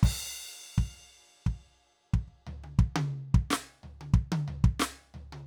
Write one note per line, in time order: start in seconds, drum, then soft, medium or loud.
0.01 kick loud
0.01 snare soft
0.01 crash loud
0.79 kick loud
1.47 kick medium
2.14 kick loud
2.28 kick soft
2.47 floor tom medium
2.64 high tom soft
2.80 kick loud
2.97 high tom loud
3.35 kick loud
3.51 snare loud
3.54 snare loud
3.84 floor tom soft
4.02 high tom medium
4.14 kick loud
4.33 high tom loud
4.49 floor tom medium
4.65 kick loud
4.80 snare loud
4.83 snare loud
5.15 floor tom medium
5.33 high tom medium